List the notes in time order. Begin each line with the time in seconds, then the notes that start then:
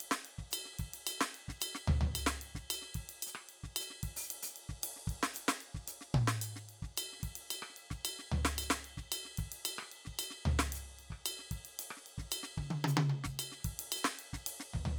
0.01 ride
0.12 snare
0.25 ride
0.39 kick, snare
0.51 hi-hat pedal, ride bell
0.66 snare
0.74 cross-stick
0.79 kick, ride
0.86 kick
0.94 snare, ride
0.97 snare
1.07 hi-hat pedal, ride bell
1.21 snare
1.35 ride
1.49 kick, snare
1.61 hi-hat pedal, ride bell
1.75 snare
1.88 kick, floor tom
1.95 kick
2.01 floor tom
2.16 hi-hat pedal, ride bell
2.27 snare
2.42 ride
2.56 kick, snare
2.71 hi-hat pedal, ride bell
2.83 snare
2.88 cross-stick
2.95 kick, ride
3.10 ride
3.23 ride bell
3.27 hi-hat pedal
3.35 cross-stick
3.42 cross-stick
3.49 ride
3.64 kick, snare
3.77 hi-hat pedal, ride bell
3.91 snare
4.04 kick, ride
4.17 open hi-hat
4.25 hi-hat pedal
4.31 ride
4.43 open hi-hat
4.57 ride
4.70 kick, snare
4.83 hi-hat pedal, ride
4.97 snare
5.08 kick, ride
5.14 kick
5.23 snare
5.34 hi-hat pedal, ride
5.49 snare
5.61 ride
5.75 kick, snare
5.88 hi-hat pedal, ride, percussion
6.02 snare
6.15 kick, mid tom
6.21 kick
6.25 kick, snare
6.42 hi-hat pedal, ride bell
6.56 snare
6.69 ride
6.83 kick, snare
6.97 hi-hat pedal, ride bell
7.13 snare
7.20 kick, snare, ride
7.36 ride
7.51 hi-hat pedal, ride bell
7.63 cross-stick
7.70 snare
7.77 ride
7.91 kick, snare
8.05 hi-hat pedal, ride bell
8.20 snare
8.32 floor tom
8.45 snare
8.59 hi-hat pedal, ride bell
8.71 snare
8.85 ride
8.98 kick, snare
9.12 hi-hat pedal, ride bell
9.26 snare
9.38 kick, ride
9.46 kick
9.52 ride
9.66 hi-hat pedal, ride bell
9.79 cross-stick
9.83 cross-stick
9.92 ride
10.06 kick, snare
10.19 hi-hat pedal, ride bell
10.31 snare
10.46 floor tom
10.60 snare
10.73 hi-hat pedal, ride
10.99 ride
11.11 kick, cross-stick
11.26 hi-hat pedal, ride bell
11.40 snare
11.52 kick, ride
11.57 kick
11.66 ride
11.80 hi-hat pedal, ride
11.91 cross-stick
11.97 snare
12.07 ride
12.18 kick, snare
12.24 kick
12.32 hi-hat pedal, ride bell
12.44 snare
12.58 kick, high tom
12.71 high tom
12.85 hi-hat pedal, high tom
12.98 high tom
13.10 high tom
13.24 kick, snare
13.31 kick
13.40 hi-hat pedal, ride bell
13.52 snare
13.61 cross-stick
13.65 kick, ride
13.72 kick
13.80 ride
13.93 ride bell
13.97 hi-hat pedal
14.05 snare
14.19 ride
14.34 kick, snare
14.47 hi-hat pedal, ride
14.60 snare
14.74 kick, floor tom
14.82 kick
14.86 floor tom